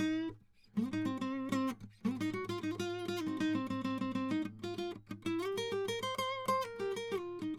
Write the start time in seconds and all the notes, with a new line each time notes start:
0.01 D#4
0.79 B3
0.95 D#4
1.07 C4
1.23 C4
1.59 C4
1.70 A#3
2.06 C4
2.22 D#4
2.35 F#4
2.51 F4
2.65 E4
2.81 F4
3.10 F4
3.22 D#4
3.28 C4
3.42 D#4
3.57 C4
3.72 C4
3.87 C4
4.03 C4
4.17 C4
4.33 D#4
4.65 F4
4.80 F4
5.27 E4
5.41 G4
5.59 A#4
5.74 G4
5.90 A#4
6.05 C5
6.20 C5
6.50 C5
6.65 A#4
6.81 G4
6.98 A#4
7.13 F4
7.44 D#4